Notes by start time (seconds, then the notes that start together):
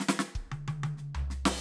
0.00 snare
0.09 snare
0.19 snare
0.35 kick
0.52 high tom
0.68 high tom
0.83 high tom
0.97 snare
1.15 floor tom
1.30 snare
1.45 snare, crash